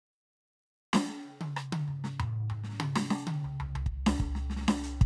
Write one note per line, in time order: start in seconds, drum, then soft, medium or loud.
0.93 snare loud
0.95 snare loud
1.09 snare soft
1.25 high tom soft
1.41 high tom medium
1.56 cross-stick medium
1.72 high tom loud
1.88 mid tom soft
2.04 snare medium
2.19 mid tom loud
2.50 mid tom medium
2.64 snare soft
2.69 snare soft
2.72 snare soft
2.75 snare soft
2.80 high tom loud
2.96 snare loud
3.10 snare loud
3.27 high tom loud
3.44 floor tom medium
3.60 floor tom medium
3.75 floor tom loud
3.86 kick soft
4.06 snare loud
4.06 floor tom loud
4.20 kick medium
4.20 snare soft
4.35 snare medium
4.50 snare medium
4.56 snare medium
4.61 snare soft
4.66 snare soft
4.68 snare loud
4.84 closed hi-hat loud
5.01 kick loud